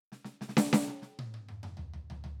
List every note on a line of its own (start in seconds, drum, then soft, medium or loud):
0.13 snare soft
0.26 snare soft
0.42 snare medium
0.50 snare soft
0.58 snare loud
0.74 snare loud
0.84 hi-hat pedal medium
0.89 snare soft
1.03 snare soft
1.20 high tom medium
1.35 high tom medium
1.50 mid tom soft
1.65 mid tom medium
1.79 floor tom medium
1.95 floor tom soft
2.12 floor tom medium
2.25 floor tom medium